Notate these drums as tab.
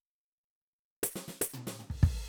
CC |---------------x|x---------------|
SD |---------oo--o--|----------------|
T1 |--------o--o----|----------------|
T2 |------------o---|----------------|
FT |--------------o-|----------------|
BD |---------------o|o---------------|